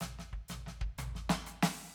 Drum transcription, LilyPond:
\new DrumStaff \drummode { \time 4/4 \tempo 4 = 122 \tuplet 3/2 { <hhp sn tomfh>8 <sn tomfh>8 bd8 <hhp sn tomfh>8 <tomfh sn>8 bd8 <hhp tomfh ss>8 sn8 sn8 <hhp ss>8 <hho sn>8 r8 } | }